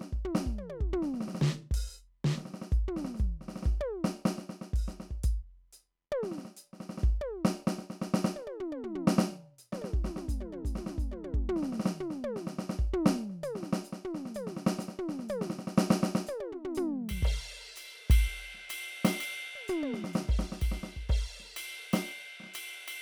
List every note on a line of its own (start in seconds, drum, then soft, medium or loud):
0.01 snare soft
0.12 kick soft
0.24 floor tom medium
0.35 snare medium
0.46 kick soft
0.58 high tom medium
0.69 high tom medium
0.81 kick soft
0.93 floor tom loud
1.02 snare soft
1.14 snare soft
1.21 snare soft
1.28 snare soft
1.35 snare soft
1.41 snare loud
1.71 open hi-hat loud
1.71 kick medium
2.25 snare loud
2.38 snare soft
2.45 snare soft
2.51 snare soft
2.54 snare soft
2.62 snare soft
2.71 kick medium
2.71 hi-hat pedal soft
2.88 floor tom medium
2.96 snare soft
3.05 snare soft
3.15 snare soft
3.15 hi-hat pedal soft
3.20 kick medium
3.41 snare soft
3.48 snare soft
3.56 snare soft
3.63 kick medium
3.63 snare soft
3.81 high tom loud
4.04 snare medium
4.25 snare medium
4.25 hi-hat pedal soft
4.38 snare soft
4.49 snare soft
4.61 snare soft
4.73 open hi-hat medium
4.73 kick medium
4.88 snare soft
5.00 snare soft
5.11 kick soft
5.24 open hi-hat medium
5.24 kick medium
5.73 hi-hat pedal medium
6.12 high tom loud
6.23 snare soft
6.32 snare soft
6.38 snare soft
6.45 snare soft
6.57 hi-hat pedal loud
6.73 snare soft
6.80 snare soft
6.89 snare soft
6.98 snare soft
7.03 kick medium
7.21 high tom loud
7.45 snare loud
7.67 snare medium
7.79 snare soft
7.90 snare soft
8.02 snare medium
8.14 snare medium
8.25 snare medium
8.36 high tom medium
8.47 high tom medium
8.60 floor tom medium
8.72 high tom medium
8.83 floor tom medium
8.95 floor tom medium
9.07 snare loud
9.18 snare loud
9.59 hi-hat pedal medium
9.72 snare soft
9.72 high tom medium
9.81 snare soft
9.81 high tom medium
9.94 kick medium
10.04 snare soft
10.04 floor tom medium
10.16 snare soft
10.16 floor tom medium
10.28 kick soft
10.28 hi-hat pedal medium
10.40 floor tom medium
10.40 high tom soft
10.52 floor tom medium
10.52 high tom soft
10.65 kick soft
10.65 hi-hat pedal medium
10.76 snare soft
10.76 floor tom medium
10.86 snare soft
10.86 floor tom medium
10.98 kick soft
10.98 hi-hat pedal medium
11.11 floor tom medium
11.11 high tom soft
11.24 floor tom medium
11.24 high tom medium
11.34 kick medium
11.48 floor tom loud
11.56 snare soft
11.63 snare soft
11.72 snare soft
11.80 snare medium
11.86 snare medium
12.00 floor tom medium
12.10 snare soft
12.24 high tom loud
12.36 snare soft
12.47 snare soft
12.59 snare medium
12.70 snare medium
12.79 kick medium
12.93 floor tom loud
13.06 snare loud
13.30 snare soft
13.43 hi-hat pedal medium
13.43 high tom loud
13.55 snare soft
13.63 snare soft
13.73 snare medium
13.84 hi-hat pedal medium
13.93 snare soft
14.04 floor tom medium
14.15 snare soft
14.26 snare soft
14.35 hi-hat pedal medium
14.35 high tom medium
14.47 snare soft
14.57 snare soft
14.67 snare medium
14.79 snare medium
14.79 hi-hat pedal medium
14.88 snare soft
14.98 floor tom medium
15.09 snare soft
15.19 snare soft
15.29 hi-hat pedal medium
15.29 high tom loud
15.41 snare medium
15.50 snare medium
15.59 snare soft
15.67 snare medium
15.77 snare loud
15.77 hi-hat pedal medium
15.91 snare loud
16.03 snare medium
16.15 snare medium
16.27 hi-hat pedal medium
16.27 high tom loud
16.40 high tom medium
16.52 floor tom medium
16.64 floor tom medium
16.75 floor tom loud
16.75 hi-hat pedal loud
17.09 kick soft
17.09 ride medium
17.23 kick medium
17.23 crash medium
17.76 hi-hat pedal loud
17.76 ride medium
18.10 kick medium
18.10 ride loud
18.55 snare soft
18.70 hi-hat pedal loud
18.70 ride loud
19.05 snare loud
19.05 ride loud
19.20 hi-hat pedal medium
19.20 ride loud
19.55 high tom soft
19.68 floor tom loud
19.68 hi-hat pedal loud
19.83 high tom medium
19.94 snare soft
20.04 snare soft
20.13 snare medium
20.13 hi-hat pedal medium
20.28 kick medium
20.28 crash medium
20.39 snare medium
20.52 snare soft
20.61 kick medium
20.61 ride medium
20.72 snare soft
20.83 snare soft
20.96 kick soft
21.09 kick medium
21.09 crash medium
21.40 snare soft
21.56 hi-hat pedal loud
21.56 ride loud
21.93 snare medium
21.93 ride loud
22.08 ride soft
22.40 snare soft
22.44 snare soft
22.46 snare soft
22.54 hi-hat pedal loud
22.54 ride loud
22.88 ride loud
22.95 hi-hat pedal soft